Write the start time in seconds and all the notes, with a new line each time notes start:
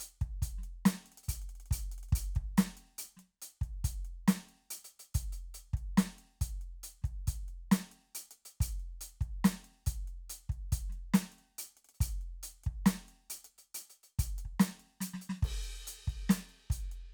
0.01 closed hi-hat
0.22 kick, closed hi-hat
0.43 closed hi-hat, kick
0.59 snare
0.64 closed hi-hat
0.86 closed hi-hat, snare
1.07 closed hi-hat
1.13 closed hi-hat
1.18 closed hi-hat
1.24 closed hi-hat
1.29 closed hi-hat, kick
1.42 closed hi-hat
1.50 closed hi-hat
1.56 closed hi-hat
1.61 closed hi-hat
1.67 closed hi-hat
1.72 closed hi-hat, kick
1.92 closed hi-hat
1.99 closed hi-hat
2.04 closed hi-hat
2.09 kick, closed hi-hat
2.16 closed hi-hat
2.36 kick, closed hi-hat
2.58 closed hi-hat, snare
2.78 closed hi-hat
2.99 closed hi-hat
3.17 snare, closed hi-hat
3.43 closed hi-hat
3.62 kick, closed hi-hat
3.85 closed hi-hat, kick
4.06 closed hi-hat
4.29 closed hi-hat, snare
4.50 closed hi-hat
4.71 closed hi-hat
4.85 closed hi-hat
5.00 closed hi-hat
5.15 closed hi-hat, kick
5.33 closed hi-hat
5.55 closed hi-hat
5.74 kick, closed hi-hat
5.98 closed hi-hat, snare
6.19 closed hi-hat
6.42 closed hi-hat, kick
6.62 closed hi-hat
6.84 closed hi-hat
7.03 kick, snare, closed hi-hat
7.28 closed hi-hat, kick
7.49 closed hi-hat
7.72 closed hi-hat, snare
7.92 closed hi-hat
8.16 closed hi-hat
8.32 closed hi-hat
8.46 closed hi-hat
8.61 closed hi-hat, kick
8.80 closed hi-hat
9.02 closed hi-hat
9.22 kick, closed hi-hat
9.45 closed hi-hat, snare
9.65 closed hi-hat
9.87 closed hi-hat, kick
10.08 closed hi-hat
10.30 closed hi-hat
10.50 kick, closed hi-hat
10.73 closed hi-hat, kick
10.90 snare, closed hi-hat
11.15 closed hi-hat, snare
11.33 closed hi-hat
11.39 closed hi-hat
11.59 closed hi-hat
11.78 closed hi-hat
11.85 closed hi-hat
11.90 closed hi-hat
11.95 closed hi-hat
12.01 closed hi-hat, kick
12.22 closed hi-hat
12.44 closed hi-hat
12.64 kick, closed hi-hat
12.87 closed hi-hat, snare
13.09 closed hi-hat
13.31 closed hi-hat
13.45 closed hi-hat
13.59 closed hi-hat
13.75 closed hi-hat
13.91 closed hi-hat
14.04 closed hi-hat
14.20 closed hi-hat, kick
14.39 closed hi-hat
14.46 kick
14.60 closed hi-hat, snare
14.80 closed hi-hat
15.01 closed hi-hat, snare
15.14 snare
15.22 closed hi-hat
15.30 snare
15.43 kick, crash
15.64 closed hi-hat
15.88 closed hi-hat
16.08 kick, closed hi-hat
16.30 closed hi-hat, snare
16.50 closed hi-hat
16.71 closed hi-hat, kick
16.92 closed hi-hat